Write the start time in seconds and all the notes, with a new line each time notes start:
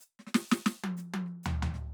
0.00 hi-hat pedal
0.19 snare
0.27 snare
0.34 snare
0.48 snare, hi-hat pedal
0.66 snare
0.84 high tom
0.97 snare, hi-hat pedal
1.14 high tom
1.26 cross-stick
1.43 floor tom, hi-hat pedal
1.62 floor tom
1.74 snare